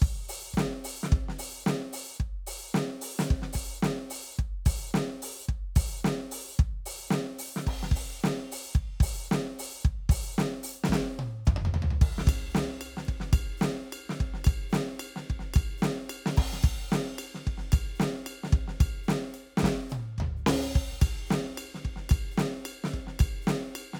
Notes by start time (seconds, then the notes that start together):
0.02 kick
0.29 open hi-hat
0.54 kick, snare, hi-hat pedal
0.85 open hi-hat
1.04 snare, hi-hat pedal
1.12 kick
1.29 snare
1.39 open hi-hat
1.64 snare, hi-hat pedal
1.93 open hi-hat
2.17 kick, hi-hat pedal
2.47 open hi-hat
2.72 snare, hi-hat pedal
3.02 open hi-hat
3.20 snare
3.26 hi-hat pedal
3.31 kick
3.42 snare
3.53 open hi-hat, kick
3.79 hi-hat pedal
3.83 snare
4.11 open hi-hat
4.36 kick, hi-hat pedal
4.66 open hi-hat, kick
4.91 snare, hi-hat pedal
5.23 open hi-hat
5.45 kick, hi-hat pedal
5.76 open hi-hat, kick
6.01 hi-hat pedal
6.05 snare
6.32 open hi-hat
6.57 kick, hi-hat pedal
6.86 open hi-hat
7.09 snare, hi-hat pedal
7.39 open hi-hat
7.57 snare
7.62 hi-hat pedal
7.67 kick, crash
7.83 snare
7.92 kick
7.96 open hi-hat
8.20 snare, hi-hat pedal
8.52 open hi-hat
8.74 kick, hi-hat pedal
9.01 open hi-hat, kick
9.28 snare, hi-hat pedal
9.59 open hi-hat
9.83 kick, hi-hat pedal
10.10 open hi-hat, kick
10.34 hi-hat pedal
10.39 snare
10.64 open hi-hat
10.84 snare, hi-hat pedal
10.89 kick, snare
11.20 high tom
11.46 kick, hi-hat pedal, mid tom
11.57 mid tom
11.66 floor tom
11.75 floor tom
11.83 floor tom
11.91 floor tom
12.02 kick, crash
12.19 snare
12.27 kick, ride bell
12.50 hi-hat pedal
12.55 snare
12.81 ride bell
12.97 snare
13.06 kick, ride
13.21 snare
13.33 kick, ride bell
13.58 snare, hi-hat pedal
13.93 ride bell
14.10 snare
14.21 kick
14.34 snare
14.45 kick, ride bell
14.70 snare, hi-hat pedal
15.00 ride bell
15.16 snare
15.30 kick
15.40 snare
15.54 kick, ride bell
15.78 hi-hat pedal
15.83 snare
16.10 ride bell
16.26 snare
16.37 kick, crash
16.54 snare
16.64 kick, ride bell
16.88 hi-hat pedal
16.92 snare
17.19 ride bell
17.35 snare
17.47 kick
17.58 snare
17.73 kick, ride bell
17.96 hi-hat pedal
18.00 snare
18.27 ride bell
18.44 snare
18.53 kick
18.68 snare
18.81 kick, ride bell
19.04 hi-hat pedal
19.09 snare
19.35 ride bell
19.58 snare
19.63 kick, snare
19.90 hi-hat pedal, high tom
20.19 kick, floor tom
20.37 hi-hat pedal
20.47 snare, crash
20.76 kick
20.87 snare
20.93 snare
21.02 kick, ride bell
21.27 hi-hat pedal
21.31 snare
21.58 ride bell
21.75 snare
21.85 kick
21.96 snare
22.10 kick, ride bell
22.32 hi-hat pedal
22.38 snare
22.66 ride bell
22.84 snare
22.94 kick
23.07 snare
23.20 kick, ride bell
23.42 hi-hat pedal
23.48 snare
23.76 ride bell
23.94 snare